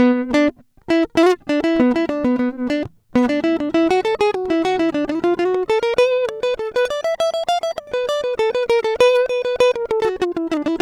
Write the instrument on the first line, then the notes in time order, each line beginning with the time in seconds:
acoustic guitar
0.01 B3
0.35 D4
0.91 E4
1.18 F4
1.50 D4
1.65 E4
1.81 B3
1.97 E4
2.10 D4
2.25 B3
2.41 B3
2.71 D4
3.16 B3
3.30 D4
3.45 E4
3.62 D4
3.75 E4
3.92 F#4
4.06 A4
4.22 G#4
4.36 F#4
4.51 E4
4.66 F#4
4.81 E4
4.96 D4
5.10 D#4
5.25 F4
5.40 F#4
5.71 A4
5.84 A#4
5.99 C5
6.26 A4
6.44 B4
6.55 A4
6.77 B4
6.91 D5
7.05 E5
7.21 E5
7.35 E5
7.50 F5
7.64 E5
7.79 D5
7.95 B4
8.10 D5
8.25 B4
8.40 A4
8.56 B4
8.71 A#4
8.86 A4
9.01 B4
9.31 B4
9.46 B4
9.61 B4
9.72 A#4
9.92 A4
10.01 A4
10.06 F#4
10.23 F4
10.38 E4
10.53 D#4
10.67 E4